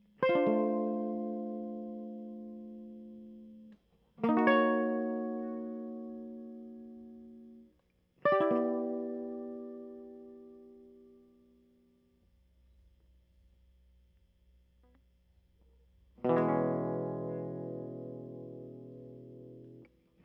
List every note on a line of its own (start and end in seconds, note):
0.23 3.76 C5
0.29 3.65 F4
0.36 0.44 C#4
0.36 3.72 D4
0.47 3.76 A3
4.23 7.71 A#3
4.23 4.29 D4
4.29 7.81 D#4
4.37 7.74 F#4
4.47 7.49 C#5
8.26 10.95 D5
8.32 12.22 G4
8.41 12.01 E4
8.52 12.31 B3
16.26 19.89 B2
16.30 19.88 E3
16.37 19.88 G#3